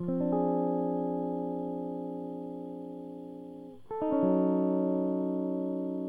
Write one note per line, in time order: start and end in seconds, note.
0.00 3.66 F3
0.08 3.69 C4
0.21 3.66 D4
0.33 3.76 G#4
3.91 6.09 A4
4.03 6.09 D#4
4.13 6.09 C#4
4.20 6.09 F#3